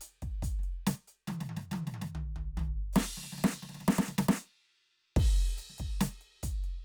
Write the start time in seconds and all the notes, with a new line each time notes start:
0.01 closed hi-hat
0.22 kick, closed hi-hat
0.43 closed hi-hat, kick
0.59 snare
0.64 closed hi-hat
0.87 closed hi-hat, snare
1.08 closed hi-hat
1.28 snare, high tom
1.41 snare
1.49 high tom
1.57 snare
1.71 snare, high tom
1.87 snare
1.94 high tom
2.02 snare
2.15 floor tom
2.36 floor tom
2.57 snare, floor tom
2.93 snare, hi-hat pedal, crash
3.17 snare
3.23 snare
3.32 snare
3.38 snare
3.44 snare
3.53 snare
3.63 snare
3.69 snare
3.75 snare
3.80 snare
3.88 snare
3.98 snare
4.08 snare
4.29 snare
5.16 kick, crash
5.36 closed hi-hat
5.58 closed hi-hat
5.69 snare
5.78 kick, closed hi-hat
6.01 closed hi-hat, snare
6.21 closed hi-hat
6.43 closed hi-hat, kick
6.64 closed hi-hat